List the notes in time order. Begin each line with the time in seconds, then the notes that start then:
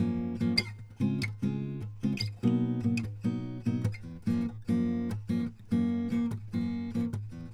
0.00 F#2 F3 A#3 C#4
0.42 F#2 F3 A#3 C#4
1.01 C#3 G#3 C4 F4
1.44 C#3 G#3 C4 F4
2.04 C#3 G#3 C4 F4
2.44 B2 F#3 A#3 D#4
2.81 B2 D#4
2.86 F#3 A#3
3.25 B2 F#3 A#3 D#4
3.67 B2 F#3 A#3 D#4
4.04 E2
4.28 F#2 F3 A#3 C#4
4.69 F#2 F3 A#3 C#4
5.30 F#2 F3 A#3 C#4
5.72 F#2 A#3 C#4
6.11 F#2 A#3 C#4
6.55 F#2 A#3 C#4
6.93 F#2 A#3 C#4
7.33 E2